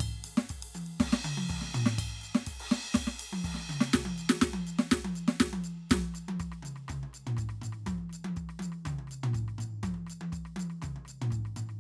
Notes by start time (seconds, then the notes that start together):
0.01 kick, ride bell, percussion
0.25 ride, percussion
0.38 snare
0.50 kick, ride, percussion
0.63 ride
0.76 high tom, percussion
0.87 ride
1.01 kick, snare, percussion, ride
1.13 snare
1.24 mid tom, percussion
1.38 high tom
1.49 kick, percussion, ride
1.62 snare
1.69 snare
1.75 floor tom, percussion
1.87 snare
1.99 kick, ride bell, percussion
2.22 ride, percussion
2.36 snare
2.48 kick, ride, percussion
2.61 ride
2.72 snare, percussion
2.84 ride
2.95 kick, snare, ride, percussion
3.08 snare
3.20 ride, percussion
3.34 high tom
3.45 kick, percussion, ride
3.55 snare
3.59 snare
3.70 mid tom, percussion
3.82 snare
3.94 kick, snare, percussion
4.06 high tom
4.19 kick, percussion
4.30 snare
4.42 kick, snare, percussion
4.54 high tom
4.68 percussion
4.80 snare
4.91 kick, snare, percussion
5.05 high tom
5.16 percussion
5.29 snare
5.40 kick, snare, percussion
5.54 high tom
5.65 percussion
5.91 kick, snare, high tom, percussion
6.15 cross-stick, percussion
6.29 high tom
6.40 kick, cross-stick, percussion
6.53 cross-stick
6.63 mid tom, percussion
6.77 cross-stick
6.89 kick, cross-stick, mid tom, percussion
7.04 mid tom
7.14 cross-stick, percussion
7.28 floor tom
7.38 kick, cross-stick, percussion
7.50 cross-stick
7.62 floor tom, percussion
7.73 cross-stick
7.87 kick, cross-stick, high tom, percussion
7.99 high tom
8.02 high tom
8.10 cross-stick, percussion
8.25 high tom
8.37 kick, cross-stick, percussion
8.50 cross-stick
8.60 high tom, percussion
8.73 cross-stick
8.86 kick, cross-stick, mid tom, percussion
8.99 mid tom
9.08 cross-stick, percussion
9.24 floor tom
9.34 kick, cross-stick, percussion
9.49 cross-stick
9.59 floor tom, percussion
9.84 kick, cross-stick, high tom, percussion
9.95 high tom
9.99 high tom
10.07 cross-stick, percussion
10.22 high tom
10.33 kick, cross-stick, percussion
10.46 cross-stick
10.57 high tom, percussion
10.71 cross-stick
10.83 kick, cross-stick, mid tom, percussion
10.97 mid tom
11.06 cross-stick, percussion
11.23 floor tom
11.31 kick, cross-stick, percussion
11.46 cross-stick
11.57 floor tom, percussion
11.70 cross-stick